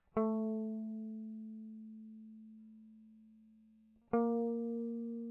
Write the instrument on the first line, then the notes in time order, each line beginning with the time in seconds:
electric guitar
0.17 A3
4.13 A#3